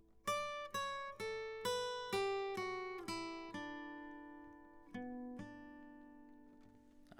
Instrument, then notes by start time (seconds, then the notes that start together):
acoustic guitar
0.28 D5
0.76 C#5
1.21 A4
1.66 B4
2.14 G4
2.56 F#4
3.09 E4
3.56 D4
4.96 B3
5.40 D4